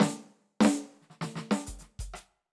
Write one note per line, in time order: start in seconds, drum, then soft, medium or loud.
0.00 snare loud
0.60 snare loud
0.64 snare loud
1.01 snare soft
1.10 snare soft
1.21 snare medium
1.21 hi-hat pedal medium
1.35 snare medium
1.51 snare medium
1.56 cross-stick soft
1.66 closed hi-hat medium
1.66 kick soft
1.78 snare soft
1.78 hi-hat pedal medium
1.99 closed hi-hat medium
1.99 kick medium
2.13 cross-stick medium
2.13 hi-hat pedal medium